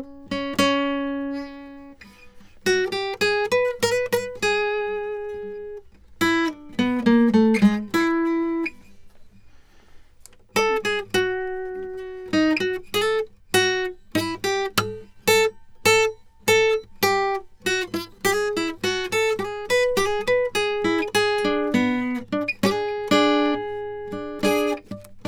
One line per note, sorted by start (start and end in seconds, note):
0.00 0.28 C#4
0.32 0.56 C#4
0.60 1.46 C#4
2.67 2.90 F#4
2.93 3.17 G4
3.22 3.49 G#4
3.52 3.78 B4
3.83 4.09 B4
4.13 4.29 B4
4.43 5.86 G#4
6.22 6.47 E4
6.47 6.78 D4
6.79 7.04 B3
7.07 7.32 A#3
7.34 7.59 A3
7.63 7.90 G#3
7.95 8.71 E4
10.57 10.82 A4
10.86 11.06 G#4
11.15 12.37 F#4
12.34 12.58 D#4
12.61 12.81 F#4
12.95 13.06 G#4
13.07 13.26 A4
13.55 13.93 F#4
14.16 14.39 E4
14.45 14.72 G4
15.28 15.51 A4
15.86 16.14 A4
16.48 16.83 A4
17.03 17.43 G4
17.67 17.90 F#4
17.95 18.14 F4
18.25 18.43 G4
18.43 18.63 G#4
18.57 18.79 E4
18.84 19.10 F#4
19.13 19.39 A4
19.40 19.69 G#4
19.71 19.89 B4
19.98 20.24 G#4
20.28 20.52 B4
20.56 21.11 G#4
20.85 21.08 E4
21.15 21.80 G#4
21.45 22.05 D4
21.75 22.25 B3
22.33 22.48 D4
22.64 22.76 D4
22.64 22.76 G4
22.77 23.11 G#4
23.12 23.59 D4
23.12 24.43 G#4
24.14 24.41 D4
24.44 24.82 D4
24.44 24.84 G#4